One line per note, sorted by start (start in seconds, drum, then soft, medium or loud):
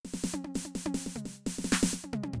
0.05 snare soft
0.14 snare medium
0.24 snare medium
0.34 high tom loud
0.44 high tom medium
0.54 snare medium
0.54 hi-hat pedal medium
0.65 high tom medium
0.75 snare medium
0.86 high tom loud
0.94 snare medium
1.06 snare medium
1.16 hi-hat pedal medium
1.16 mid tom medium
1.25 snare medium
1.46 snare medium
1.58 snare medium
1.64 snare medium
1.72 snare loud
1.82 snare loud
1.82 hi-hat pedal medium
1.93 snare medium
2.04 high tom medium
2.13 mid tom loud
2.23 high tom loud
2.33 floor tom medium